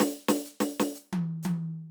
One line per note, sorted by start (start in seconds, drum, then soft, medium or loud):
0.00 snare loud
0.19 hi-hat pedal soft
0.28 snare loud
0.45 hi-hat pedal medium
0.60 snare loud
0.80 snare loud
0.95 hi-hat pedal medium
1.13 high tom loud
1.43 hi-hat pedal medium
1.43 high tom loud